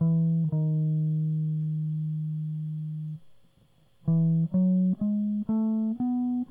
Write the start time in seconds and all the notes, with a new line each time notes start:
0.02 E3
0.54 D#3
4.09 E3
4.55 F#3
5.03 G#3
5.50 A3
6.01 B3